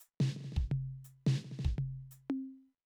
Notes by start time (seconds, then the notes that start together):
0.00 hi-hat pedal
0.20 snare
0.36 snare
0.40 snare
0.44 snare
0.52 snare
0.56 kick
0.71 floor tom
1.04 hi-hat pedal
1.26 snare
1.37 snare
1.44 snare
1.51 snare
1.59 snare
1.65 kick
1.78 floor tom
2.11 hi-hat pedal
2.30 high tom